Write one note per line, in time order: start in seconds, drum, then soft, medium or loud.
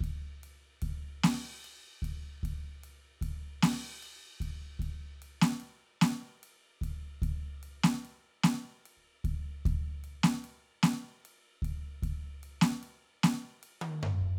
0.01 kick medium
0.01 ride soft
0.44 ride medium
0.82 kick medium
0.82 ride medium
1.24 snare loud
1.24 crash medium
1.65 ride soft
2.02 kick medium
2.02 ride medium
2.44 kick medium
2.44 ride medium
2.84 ride medium
3.22 kick medium
3.22 ride medium
3.63 snare loud
3.63 crash medium
4.03 ride soft
4.41 kick medium
4.41 ride soft
4.80 kick medium
4.80 ride soft
5.22 ride medium
5.42 snare loud
5.56 snare soft
5.60 ride soft
6.02 snare loud
6.02 ride medium
6.44 ride medium
6.82 kick medium
6.82 ride medium
7.22 kick medium
7.22 ride medium
7.63 ride medium
7.84 snare loud
7.98 snare soft
8.05 ride soft
8.44 snare loud
8.44 ride medium
8.86 ride soft
8.97 kick soft
9.25 kick medium
9.25 ride medium
9.66 kick loud
9.66 ride soft
9.89 snare soft
10.04 ride soft
10.24 snare loud
10.45 ride soft
10.83 snare loud
10.83 ride medium
10.97 snare soft
11.26 ride medium
11.62 kick medium
11.62 ride medium
12.03 kick medium
12.03 ride medium
12.33 snare soft
12.44 ride soft
12.62 snare loud
12.75 snare soft
12.80 snare soft
12.80 ride soft
13.24 snare loud
13.24 ride medium
13.63 ride medium
13.82 high tom loud
14.03 floor tom loud
14.22 kick soft